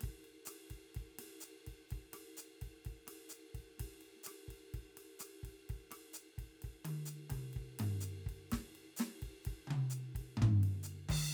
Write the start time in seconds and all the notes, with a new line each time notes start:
0.01 kick, snare, ride
0.10 kick
0.25 ride
0.46 cross-stick, snare, hi-hat pedal, ride
0.71 kick, ride
0.95 kick, ride
1.02 kick
1.19 snare, ride
1.41 hi-hat pedal, ride
1.67 kick, ride
1.89 kick, hi-hat pedal, ride
1.98 kick
2.14 cross-stick, ride
2.38 hi-hat pedal, ride
2.62 kick, ride
2.68 kick
2.86 kick, ride
2.92 kick
3.08 cross-stick, ride
3.30 hi-hat pedal, ride
3.55 kick, ride
3.60 kick
3.79 kick, snare, ride
3.86 kick
4.02 ride
4.17 snare
4.24 cross-stick, hi-hat pedal, ride
4.49 kick, ride
4.74 kick, ride
4.80 kick
4.97 cross-stick, ride
5.20 cross-stick, hi-hat pedal, ride
5.44 kick, ride
5.49 kick
5.70 kick, ride
5.76 kick
5.91 cross-stick, snare, ride
6.14 hi-hat pedal, ride
6.37 kick, mid tom, ride
6.44 kick
6.63 kick, ride
6.70 kick
6.85 high tom, ride
7.06 hi-hat pedal, ride
7.30 kick, mid tom, ride
7.37 kick
7.54 kick, ride
7.62 kick
7.80 floor tom, ride
8.01 hi-hat pedal
8.06 ride
8.27 kick, ride
8.32 kick
8.50 kick, snare, hi-hat pedal, ride
8.59 kick
8.76 ride
8.97 snare, hi-hat pedal, ride
9.23 kick, ride
9.28 kick
9.43 kick, hi-hat pedal, ride
9.53 kick
9.68 mid tom
9.71 mid tom
9.91 hi-hat pedal, ride
10.16 kick, ride
10.21 kick
10.38 floor tom
10.42 kick, floor tom
10.64 ride
10.84 hi-hat pedal, ride bell
11.09 kick, high tom, crash
11.17 kick